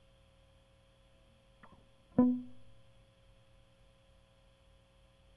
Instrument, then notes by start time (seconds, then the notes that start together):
electric guitar
2.19 B3